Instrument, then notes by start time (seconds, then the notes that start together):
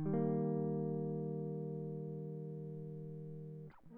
electric guitar
0.00 D#3
0.07 G3
0.14 A#3